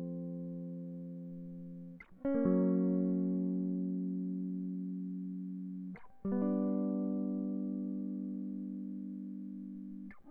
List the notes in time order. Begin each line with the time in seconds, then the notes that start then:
2.25 C#4
2.35 A#3
2.46 F#3
6.26 G3
6.32 B3
6.42 D4